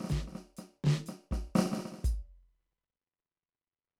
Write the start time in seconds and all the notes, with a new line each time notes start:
0.01 snare
0.04 snare
0.08 snare, hi-hat pedal
0.10 kick, snare
0.21 snare
0.28 snare
0.32 snare
0.35 snare
0.57 snare, hi-hat pedal
0.84 snare
0.87 snare
1.06 snare, hi-hat pedal
1.21 snare
1.25 snare
1.31 kick, snare
1.55 snare, hi-hat pedal
1.59 snare
1.66 snare
1.72 snare
1.77 snare
1.79 snare
1.85 snare
1.92 snare
1.94 snare
1.99 snare
2.03 kick, snare, hi-hat pedal
2.08 kick, snare
2.14 kick